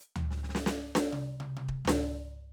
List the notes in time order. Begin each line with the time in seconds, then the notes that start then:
0.00 hi-hat pedal
0.16 floor tom
0.31 snare
0.36 snare
0.43 snare
0.49 snare
0.55 snare
0.66 snare
0.95 snare
1.12 high tom
1.40 high tom
1.57 high tom
1.68 kick
1.85 snare, floor tom